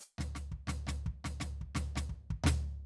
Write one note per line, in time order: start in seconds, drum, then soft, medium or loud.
0.00 hi-hat pedal medium
0.18 snare medium
0.18 floor tom medium
0.35 snare medium
0.35 floor tom soft
0.51 kick soft
0.67 snare medium
0.67 floor tom medium
0.87 snare medium
0.87 floor tom medium
1.06 kick soft
1.24 snare medium
1.24 floor tom medium
1.40 snare medium
1.40 floor tom medium
1.61 kick soft
1.75 snare medium
1.75 floor tom medium
1.96 snare medium
1.96 floor tom medium
2.09 kick soft
2.30 kick medium
2.44 snare loud
2.44 floor tom loud